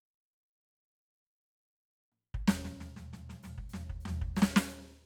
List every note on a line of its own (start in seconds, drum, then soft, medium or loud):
2.12 mid tom soft
2.34 kick soft
2.48 snare loud
2.48 hi-hat pedal medium
2.48 floor tom medium
2.65 snare soft
2.65 floor tom medium
2.81 snare soft
2.81 floor tom soft
2.97 snare soft
2.97 floor tom soft
3.13 snare soft
3.13 floor tom soft
3.30 snare soft
3.30 floor tom soft
3.43 snare soft
3.43 floor tom soft
3.43 hi-hat pedal soft
3.58 kick soft
3.70 hi-hat pedal soft
3.74 snare soft
3.74 floor tom medium
3.90 kick soft
4.01 hi-hat pedal soft
4.06 snare soft
4.06 floor tom medium
4.22 kick soft
4.36 snare medium
4.36 hi-hat pedal soft
4.42 snare loud
4.56 snare loud
4.69 hi-hat pedal soft